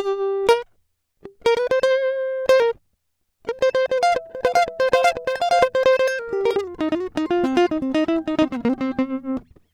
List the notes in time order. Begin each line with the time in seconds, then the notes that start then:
0.00 G4
0.49 A#4
1.47 A#4
1.59 B4
1.72 C5
1.84 C5
2.50 C5
2.60 A#4
3.50 C5
3.63 C5
3.75 C5
3.93 C5
4.04 F5
4.14 E5
4.56 F5
4.64 E5
4.74 E5
4.81 C5
4.94 C5 F5
5.05 F5
5.18 E5
5.28 C5
5.37 C5
5.42 F5
5.52 F5
5.63 C5 E5
5.76 C5
5.85 C5
5.95 C5
6.08 C5
6.20 A#4
6.34 G4
6.46 A#4
6.57 G4
6.68 F4
6.82 D#4
6.93 F#4
7.18 D#4
7.31 F4
7.45 C4
7.58 F4
7.73 D#4
7.83 C4
7.95 D#4
8.10 E4
8.29 D#4
8.40 C4 D#4
8.53 A#3
8.66 C4
8.82 C4
9.00 C4